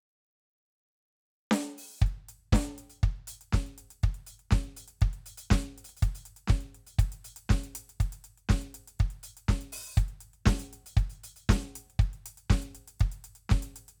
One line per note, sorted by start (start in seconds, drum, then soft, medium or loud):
1.51 snare loud
1.66 snare soft
1.70 snare soft
1.78 open hi-hat medium
1.98 kick loud
1.98 hi-hat pedal soft
2.06 closed hi-hat soft
2.29 closed hi-hat medium
2.52 kick loud
2.52 snare loud
2.78 closed hi-hat medium
2.90 closed hi-hat soft
3.03 kick loud
3.03 closed hi-hat soft
3.16 closed hi-hat soft
3.27 closed hi-hat loud
3.41 closed hi-hat medium
3.52 kick loud
3.52 snare medium
3.66 closed hi-hat soft
3.78 kick soft
3.78 closed hi-hat medium
3.90 closed hi-hat medium
4.03 kick loud
4.03 closed hi-hat soft
4.14 closed hi-hat soft
4.24 closed hi-hat medium
4.24 kick soft
4.39 closed hi-hat soft
4.51 kick loud
4.51 snare medium
4.64 closed hi-hat soft
4.77 closed hi-hat medium
4.88 closed hi-hat medium
5.01 kick loud
5.01 closed hi-hat soft
5.13 closed hi-hat soft
5.26 closed hi-hat medium
5.37 closed hi-hat medium
5.50 kick loud
5.50 snare loud
5.64 closed hi-hat soft
5.78 closed hi-hat medium
5.84 closed hi-hat medium
5.89 closed hi-hat soft
5.97 closed hi-hat medium
6.02 kick loud
6.02 closed hi-hat medium
6.15 closed hi-hat medium
6.25 closed hi-hat medium
6.36 closed hi-hat medium
6.47 kick loud
6.47 snare medium
6.61 closed hi-hat soft
6.74 closed hi-hat soft
6.87 closed hi-hat medium
6.99 kick loud
6.99 closed hi-hat medium
7.12 closed hi-hat medium
7.23 closed hi-hat medium
7.23 kick soft
7.36 closed hi-hat medium
7.49 kick loud
7.49 snare loud
7.64 closed hi-hat medium
7.72 kick soft
7.72 closed hi-hat loud
7.89 closed hi-hat medium
8.00 kick loud
8.00 closed hi-hat medium
8.12 closed hi-hat medium
8.24 closed hi-hat medium
8.38 closed hi-hat soft
8.49 kick loud
8.49 snare loud
8.61 closed hi-hat soft
8.74 closed hi-hat medium
8.88 closed hi-hat medium
8.99 kick loud
8.99 closed hi-hat soft
9.10 closed hi-hat soft
9.23 closed hi-hat medium
9.37 closed hi-hat medium
9.48 kick loud
9.48 snare medium
9.61 closed hi-hat medium
9.72 open hi-hat loud
9.87 open hi-hat soft
9.95 kick loud
9.95 closed hi-hat medium
9.95 hi-hat pedal soft
10.08 closed hi-hat soft
10.21 closed hi-hat medium
10.33 closed hi-hat soft
10.46 kick loud
10.46 snare loud
10.59 closed hi-hat medium
10.65 kick soft
10.73 closed hi-hat medium
10.86 closed hi-hat medium
10.97 kick loud
10.97 closed hi-hat soft
11.10 closed hi-hat soft
11.24 closed hi-hat medium
11.36 closed hi-hat medium
11.49 kick loud
11.49 snare loud
11.63 closed hi-hat soft
11.75 closed hi-hat medium
11.90 closed hi-hat soft
11.99 kick loud
11.99 closed hi-hat soft
12.13 closed hi-hat soft
12.26 closed hi-hat medium
12.37 closed hi-hat medium
12.50 kick loud
12.50 snare loud
12.62 closed hi-hat medium
12.71 kick soft
12.75 closed hi-hat medium
12.88 closed hi-hat medium
13.00 kick loud
13.00 closed hi-hat medium
13.12 closed hi-hat medium
13.24 closed hi-hat medium
13.35 closed hi-hat medium
13.49 kick loud
13.49 snare medium
13.62 closed hi-hat medium
13.73 kick soft
13.73 closed hi-hat medium
13.88 closed hi-hat medium